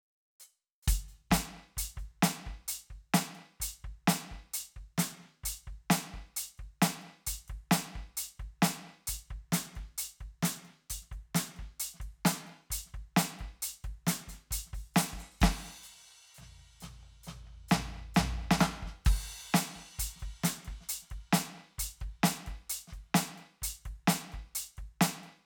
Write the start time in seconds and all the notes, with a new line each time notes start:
0.40 hi-hat pedal
0.82 hi-hat pedal
0.87 closed hi-hat, kick
1.08 closed hi-hat
1.31 closed hi-hat, kick, snare
1.77 closed hi-hat, kick
1.95 closed hi-hat, kick, snare
2.22 closed hi-hat, snare
2.46 kick
2.68 closed hi-hat
2.90 kick
3.14 closed hi-hat, snare
3.35 closed hi-hat
3.60 closed hi-hat, kick
3.84 kick
4.07 closed hi-hat, snare
4.31 kick
4.54 closed hi-hat
4.76 kick, closed hi-hat
4.98 closed hi-hat, snare
5.43 closed hi-hat, kick
5.67 kick, closed hi-hat
5.90 closed hi-hat, snare
6.13 kick
6.36 closed hi-hat
6.58 kick, closed hi-hat
6.82 closed hi-hat, snare
7.01 closed hi-hat
7.26 closed hi-hat, kick
7.48 kick, closed hi-hat
7.71 closed hi-hat, snare
7.95 kick
8.17 closed hi-hat
8.39 kick, closed hi-hat
8.62 closed hi-hat, snare
9.07 closed hi-hat, kick
9.30 kick, closed hi-hat
9.52 closed hi-hat, snare
9.75 kick, closed hi-hat
9.98 closed hi-hat
10.20 kick, closed hi-hat
10.42 closed hi-hat, snare
10.65 closed hi-hat
10.90 closed hi-hat, kick
11.01 snare
11.11 kick, closed hi-hat
11.35 closed hi-hat, snare
11.56 kick, closed hi-hat
11.80 closed hi-hat
11.94 snare
12.00 kick, closed hi-hat
12.25 closed hi-hat, snare
12.47 closed hi-hat
12.70 closed hi-hat, kick
12.86 snare
12.94 kick, closed hi-hat
13.16 closed hi-hat, snare
13.39 kick, closed hi-hat
13.62 closed hi-hat
13.84 kick, closed hi-hat
14.07 closed hi-hat, snare
14.27 closed hi-hat, kick
14.51 closed hi-hat, kick
14.66 snare
14.73 open hi-hat, kick
14.94 open hi-hat, snare, hi-hat pedal
15.13 kick
15.18 open hi-hat
15.40 kick, snare, hi-hat pedal, crash
15.83 hi-hat pedal
16.34 hi-hat pedal
16.38 snare, floor tom
16.59 floor tom
16.80 snare, floor tom, hi-hat pedal
17.03 floor tom
17.23 snare, hi-hat pedal
17.27 floor tom
17.47 floor tom
17.68 snare, floor tom, hi-hat pedal
17.93 floor tom
18.14 snare, floor tom, hi-hat pedal
18.51 snare
18.59 snare, hi-hat pedal
18.82 kick, snare
19.05 kick, hi-hat pedal, crash
19.54 closed hi-hat, snare
19.75 kick, closed hi-hat
19.94 snare
19.99 closed hi-hat, kick
20.16 closed hi-hat, snare
20.22 kick
20.43 closed hi-hat, snare
20.64 kick, closed hi-hat
20.81 snare
20.89 closed hi-hat
21.02 snare
21.10 kick, closed hi-hat
21.33 closed hi-hat, snare
21.78 closed hi-hat, kick
22.00 kick, closed hi-hat
22.23 closed hi-hat, snare
22.46 kick, closed hi-hat
22.69 closed hi-hat
22.87 snare
22.92 kick, closed hi-hat
23.14 closed hi-hat, snare
23.37 closed hi-hat
23.62 closed hi-hat, kick
23.85 kick, closed hi-hat
24.07 closed hi-hat, snare
24.32 kick, closed hi-hat
24.55 closed hi-hat
24.77 kick, closed hi-hat
25.01 closed hi-hat, snare
25.23 closed hi-hat